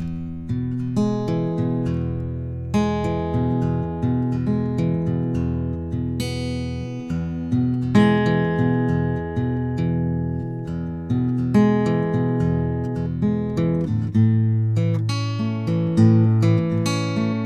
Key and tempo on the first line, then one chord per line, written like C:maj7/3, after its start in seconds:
E major, 68 BPM
0.00 E:maj
14.12 A:maj